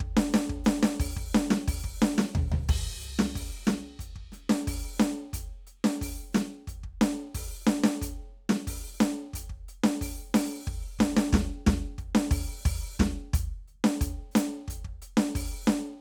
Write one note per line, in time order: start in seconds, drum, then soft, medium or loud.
0.01 kick medium
0.18 snare loud
0.33 snare loud
0.33 hi-hat pedal medium
0.50 kick medium
0.65 snare loud
0.65 hi-hat pedal medium
0.83 snare loud
1.00 open hi-hat loud
1.00 kick loud
1.17 kick medium
1.35 snare loud
1.35 hi-hat pedal soft
1.51 snare loud
1.68 open hi-hat loud
1.68 kick loud
1.85 kick medium
2.03 snare loud
2.19 snare loud
2.36 kick medium
2.36 floor tom loud
2.53 floor tom loud
2.69 kick loud
2.69 crash loud
3.01 closed hi-hat medium
3.01 hi-hat pedal medium
3.05 kick soft
3.20 snare loud
3.36 open hi-hat loud
3.36 kick medium
3.67 closed hi-hat soft
3.67 snare loud
3.67 hi-hat pedal soft
4.00 closed hi-hat medium
4.00 kick medium
4.16 kick soft
4.32 closed hi-hat medium
4.32 snare soft
4.32 hi-hat pedal soft
4.50 snare loud
4.68 open hi-hat loud
4.68 kick medium
4.98 closed hi-hat medium
4.98 snare loud
4.98 hi-hat pedal soft
5.34 closed hi-hat loud
5.34 kick medium
5.68 closed hi-hat medium
5.85 snare loud
6.02 open hi-hat loud
6.02 kick medium
6.33 closed hi-hat medium
6.33 snare loud
6.33 hi-hat pedal soft
6.68 closed hi-hat medium
6.68 kick medium
6.84 kick soft
7.02 closed hi-hat medium
7.02 snare loud
7.35 open hi-hat loud
7.35 kick medium
7.65 snare loud
7.65 hi-hat pedal soft
7.84 snare loud
8.02 closed hi-hat loud
8.02 kick medium
8.50 snare loud
8.68 open hi-hat loud
8.68 kick medium
8.99 closed hi-hat medium
8.99 snare loud
8.99 hi-hat pedal soft
9.34 closed hi-hat loud
9.34 kick medium
9.50 kick soft
9.69 closed hi-hat medium
9.84 snare loud
10.02 open hi-hat loud
10.02 kick medium
10.35 open hi-hat loud
10.35 snare loud
10.68 kick medium
11.00 kick medium
11.00 snare loud
11.00 hi-hat pedal soft
11.17 snare loud
11.33 kick loud
11.33 snare loud
11.67 kick loud
11.67 snare loud
11.99 kick medium
11.99 hi-hat pedal soft
12.16 snare loud
12.32 open hi-hat loud
12.32 kick loud
12.66 open hi-hat loud
12.66 kick loud
12.95 hi-hat pedal soft
13.00 kick loud
13.00 snare loud
13.34 closed hi-hat loud
13.34 kick loud
13.68 closed hi-hat soft
13.85 snare loud
14.02 closed hi-hat loud
14.02 kick loud
14.32 snare loud
14.32 hi-hat pedal soft
14.37 closed hi-hat loud
14.68 closed hi-hat loud
14.68 kick medium
14.85 kick medium
15.03 closed hi-hat medium
15.18 snare loud
15.36 open hi-hat loud
15.36 kick loud
15.67 snare loud
15.67 hi-hat pedal soft